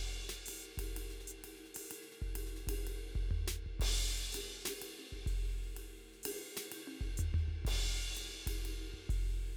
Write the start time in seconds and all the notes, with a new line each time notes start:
0.29 snare
0.46 hi-hat pedal, ride
0.62 snare
0.78 kick, ride
0.86 hi-hat pedal
0.96 ride
1.10 snare
1.20 snare
1.27 hi-hat pedal
1.44 ride
1.56 snare
1.66 snare
1.74 hi-hat pedal, ride
1.91 ride
1.95 hi-hat pedal
2.02 snare
2.12 snare
2.22 kick
2.35 ride
2.47 snare
2.56 snare
2.67 kick, ride
2.87 ride
2.98 snare
3.15 kick
3.31 floor tom
3.48 snare
3.66 kick
3.80 kick, ride
4.20 snare
4.32 hi-hat pedal, ride
4.65 snare, ride
4.76 hi-hat pedal
4.82 ride
4.99 high tom
5.12 kick
5.26 kick, crash
5.58 snare
5.76 hi-hat pedal, ride
6.13 snare
6.23 hi-hat pedal, ride
6.57 snare, ride
6.68 hi-hat pedal, ride
6.87 high tom
7.01 kick
7.17 floor tom, hi-hat pedal
7.34 floor tom
7.38 hi-hat pedal
7.48 kick
7.65 kick, ride
7.83 snare
7.98 snare
8.15 hi-hat pedal, ride
8.30 snare
8.47 kick, ride
8.65 ride
8.85 snare
8.94 kick
9.09 kick, crash
9.46 snare